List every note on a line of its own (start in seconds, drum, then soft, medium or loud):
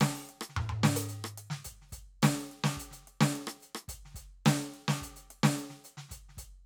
0.01 closed hi-hat medium
0.01 snare loud
0.12 open hi-hat medium
0.12 snare soft
0.25 hi-hat pedal soft
0.30 closed hi-hat soft
0.42 cross-stick medium
0.50 snare soft
0.57 kick soft
0.57 snare soft
0.57 high tom loud
0.62 kick soft
0.70 high tom medium
0.84 snare loud
0.92 snare soft
0.97 open hi-hat loud
1.04 snare soft
1.09 closed hi-hat medium
1.25 cross-stick medium
1.38 closed hi-hat medium
1.51 snare medium
1.65 closed hi-hat medium
1.65 kick soft
1.82 snare soft
1.87 snare soft
1.87 hi-hat pedal soft
1.93 closed hi-hat medium
1.93 kick soft
1.99 kick soft
2.02 kick soft
2.23 closed hi-hat loud
2.23 snare loud
2.35 open hi-hat medium
2.35 snare soft
2.46 hi-hat pedal soft
2.52 closed hi-hat soft
2.64 snare loud
2.75 kick soft
2.75 snare soft
2.80 closed hi-hat medium
2.80 kick soft
2.91 closed hi-hat medium
2.91 snare soft
2.97 snare soft
3.03 snare soft
3.08 closed hi-hat soft
3.21 snare loud
3.36 closed hi-hat soft
3.48 cross-stick medium
3.61 closed hi-hat soft
3.61 hi-hat pedal soft
3.75 cross-stick medium
3.89 closed hi-hat medium
3.89 kick soft
3.95 kick soft
3.98 kick soft
4.06 snare soft
4.12 kick soft
4.12 snare soft
4.15 closed hi-hat medium
4.15 snare soft
4.19 snare soft
4.24 kick soft
4.46 closed hi-hat medium
4.46 snare loud
4.58 closed hi-hat soft
4.58 snare soft
4.74 closed hi-hat soft
4.89 snare loud
5.02 closed hi-hat medium
5.02 kick soft
5.11 snare soft
5.15 closed hi-hat medium
5.15 snare soft
5.18 snare soft
5.24 snare soft
5.31 closed hi-hat soft
5.44 snare loud
5.59 closed hi-hat medium
5.70 snare soft
5.85 closed hi-hat soft
5.85 hi-hat pedal soft
5.98 snare medium
6.09 closed hi-hat medium
6.09 kick soft
6.09 snare soft
6.17 kick soft
6.30 snare soft
6.35 closed hi-hat medium
6.35 kick soft
6.35 snare soft
6.44 kick soft
6.47 kick soft